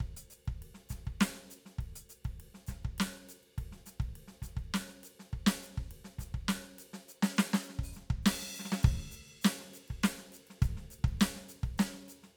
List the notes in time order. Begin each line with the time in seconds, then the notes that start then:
0.01 kick, ride
0.17 closed hi-hat
0.31 hi-hat pedal, ride
0.46 kick, ride
0.63 ride
0.75 snare
0.90 kick, snare, hi-hat pedal, ride
1.06 kick, ride
1.21 snare, ride
1.36 snare
1.51 hi-hat pedal, ride
1.66 snare
1.79 kick, ride
1.96 closed hi-hat
2.10 hi-hat pedal, ride
2.21 snare
2.25 kick, ride
2.41 ride
2.55 snare
2.67 kick, snare, hi-hat pedal, ride
2.84 kick, ride
2.99 snare, ride
3.16 snare
3.30 hi-hat pedal, ride
3.44 ride
3.58 kick, ride
3.73 snare
3.87 snare, hi-hat pedal, ride
4.00 kick, ride
4.16 ride
4.28 snare
4.43 kick, snare, hi-hat pedal, ride
4.57 kick, ride
4.75 snare, ride
4.89 snare
5.04 hi-hat pedal, ride
5.20 snare
5.33 kick, ride
5.47 snare
5.63 hi-hat pedal
5.78 kick
5.92 ride
6.05 snare
6.19 kick, snare, hi-hat pedal, ride
6.35 kick, ride
6.49 snare, ride
6.64 snare
6.79 hi-hat pedal, ride
6.94 snare
7.09 hi-hat pedal
7.23 snare
7.37 snare, hi-hat pedal
7.47 snare
7.54 snare
7.63 hi-hat pedal
7.70 snare
7.80 kick
7.84 open hi-hat
7.94 snare, hi-hat pedal
8.11 kick
8.23 snare, hi-hat pedal, crash
8.43 snare
8.56 hi-hat pedal
8.60 snare
8.66 snare
8.73 snare
8.84 kick, ride
8.99 snare
9.07 snare
9.12 hi-hat pedal, ride
9.29 ride
9.42 snare, hi-hat pedal, ride
9.61 snare
9.74 hi-hat pedal, ride
9.89 kick, ride
10.04 snare, hi-hat pedal, ride
10.18 snare
10.33 hi-hat pedal, ride
10.48 snare, ride
10.63 kick, hi-hat pedal, ride
10.78 snare
10.91 hi-hat pedal, ride
11.05 kick, ride
11.21 snare, hi-hat pedal, ride
11.36 snare
11.49 hi-hat pedal, ride
11.64 kick, ride
11.79 snare, hi-hat pedal, ride
11.94 snare
12.09 hi-hat pedal, ride
12.24 snare, ride